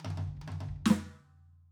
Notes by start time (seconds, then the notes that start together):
0.01 closed hi-hat, high tom
0.05 floor tom
0.11 high tom
0.18 floor tom
0.28 kick
0.37 kick
0.42 high tom
0.48 floor tom
0.52 high tom
0.61 floor tom
0.69 kick
0.76 kick
0.86 snare
0.91 snare